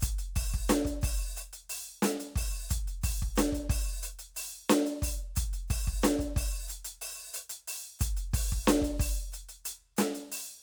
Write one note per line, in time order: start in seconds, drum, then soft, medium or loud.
0.01 closed hi-hat loud
0.01 kick medium
0.01 hi-hat pedal medium
0.19 closed hi-hat medium
0.36 open hi-hat loud
0.36 kick medium
0.54 kick medium
0.69 closed hi-hat loud
0.69 snare loud
0.69 hi-hat pedal medium
0.85 closed hi-hat medium
0.85 kick medium
1.02 open hi-hat loud
1.02 kick medium
1.02 hi-hat pedal medium
1.37 open hi-hat loud
1.37 hi-hat pedal medium
1.53 closed hi-hat medium
1.70 open hi-hat loud
2.03 open hi-hat loud
2.03 snare loud
2.03 hi-hat pedal medium
2.20 closed hi-hat medium
2.36 open hi-hat loud
2.36 kick medium
2.70 closed hi-hat loud
2.70 kick medium
2.70 hi-hat pedal medium
2.88 closed hi-hat medium
3.02 open hi-hat loud
3.02 kick medium
3.02 hi-hat pedal soft
3.23 kick medium
3.36 closed hi-hat loud
3.36 snare loud
3.36 hi-hat pedal medium
3.53 closed hi-hat medium
3.53 kick soft
3.70 open hi-hat loud
3.70 kick medium
4.03 open hi-hat loud
4.03 hi-hat pedal medium
4.19 closed hi-hat medium
4.35 open hi-hat loud
4.35 hi-hat pedal soft
4.69 closed hi-hat loud
4.69 snare loud
4.69 hi-hat pedal medium
4.87 closed hi-hat medium
5.02 open hi-hat loud
5.02 kick medium
5.02 hi-hat pedal soft
5.36 closed hi-hat loud
5.36 kick medium
5.36 hi-hat pedal medium
5.53 closed hi-hat medium
5.68 open hi-hat loud
5.68 kick medium
5.68 hi-hat pedal soft
5.88 kick medium
6.02 closed hi-hat loud
6.02 snare loud
6.02 hi-hat pedal medium
6.19 closed hi-hat medium
6.19 kick medium
6.33 kick medium
6.33 hi-hat pedal soft
6.38 open hi-hat loud
6.68 closed hi-hat loud
6.68 hi-hat pedal medium
6.85 closed hi-hat loud
7.02 open hi-hat loud
7.34 open hi-hat loud
7.34 hi-hat pedal medium
7.50 closed hi-hat loud
7.68 open hi-hat loud
8.00 closed hi-hat loud
8.00 kick medium
8.00 hi-hat pedal medium
8.17 closed hi-hat medium
8.31 open hi-hat loud
8.31 kick medium
8.31 hi-hat pedal soft
8.53 kick medium
8.65 closed hi-hat loud
8.65 snare loud
8.65 hi-hat pedal medium
8.82 closed hi-hat medium
8.82 kick medium
8.99 open hi-hat loud
8.99 kick medium
8.99 hi-hat pedal soft
9.33 closed hi-hat medium
9.33 hi-hat pedal medium
9.49 closed hi-hat medium
9.65 closed hi-hat loud
9.65 hi-hat pedal soft
9.97 closed hi-hat loud
9.97 snare loud
9.97 hi-hat pedal medium
10.15 closed hi-hat medium
10.32 open hi-hat loud
10.32 hi-hat pedal soft